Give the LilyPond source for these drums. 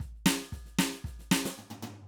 \new DrumStaff \drummode { \time 4/4 \tempo 4 = 114 <bd sn>16 sn16 sn16 sn16 <bd sn>16 sn16 sn16 sn16 <bd sn>16 sn16 sn16 sn16 tomfh16 tomfh16 tomfh8 | }